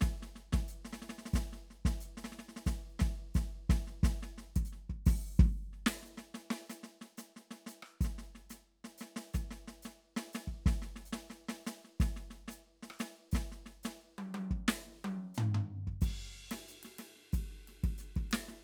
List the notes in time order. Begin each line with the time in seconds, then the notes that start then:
0.01 kick, snare, hi-hat pedal
0.22 snare, hi-hat pedal
0.36 snare
0.53 kick, snare
0.68 hi-hat pedal
0.85 snare
0.93 snare
1.02 snare
1.09 snare
1.18 snare
1.26 snare
1.33 kick, snare, hi-hat pedal
1.53 snare
1.70 snare
1.85 kick, snare
2.00 hi-hat pedal
2.17 snare
2.24 snare, hi-hat pedal
2.32 snare
2.39 snare
2.48 snare
2.56 snare
2.66 kick, snare, hi-hat pedal
2.89 hi-hat pedal
2.99 kick, snare
3.34 kick, snare, hi-hat pedal
3.70 kick, snare
3.87 snare
4.03 kick, snare, hi-hat pedal
4.23 snare
4.38 snare
4.56 kick, open hi-hat
4.65 hi-hat pedal
4.72 snare
4.90 kick
5.06 open hi-hat, kick, snare
5.39 kick
5.73 snare
5.86 snare
6.03 snare, hi-hat pedal
6.18 snare
6.34 snare
6.50 snare
6.70 snare, hi-hat pedal
6.83 snare
7.01 snare
7.18 snare, hi-hat pedal
7.36 snare
7.51 snare
7.66 snare, hi-hat pedal
7.83 cross-stick
8.01 kick, snare, hi-hat pedal
8.18 snare
8.23 hi-hat pedal
8.35 snare
8.50 snare, hi-hat pedal
8.84 snare
8.98 snare, hi-hat pedal
9.16 snare
9.34 kick, snare, hi-hat pedal
9.51 snare
9.68 snare
9.82 snare, hi-hat pedal
10.17 snare
10.33 snare, hi-hat pedal
10.48 kick
10.66 kick, snare
10.82 snare
10.96 snare
11.05 hi-hat pedal
11.13 snare
11.30 snare
11.49 snare
11.67 snare, hi-hat pedal
11.84 snare
12.00 kick, snare, hi-hat pedal
12.16 snare
12.30 snare
12.48 snare, hi-hat pedal
12.83 snare
12.90 cross-stick
12.99 snare, hi-hat pedal
13.32 kick, snare, hi-hat pedal
13.52 snare
13.66 snare
13.83 snare, hi-hat pedal
14.18 high tom
14.34 high tom
14.51 kick
14.68 snare
15.04 high tom
15.34 floor tom, hi-hat pedal
15.55 floor tom
15.87 kick
16.01 kick, hi-hat pedal, ride
16.51 snare, ride
16.68 hi-hat pedal
16.83 snare, ride
16.99 snare, ride
17.16 snare
17.19 snare
17.33 kick, hi-hat pedal, ride
17.51 snare
17.68 snare, ride
17.84 kick, ride
17.98 snare, hi-hat pedal
18.16 kick, ride
18.31 snare, ride
18.48 snare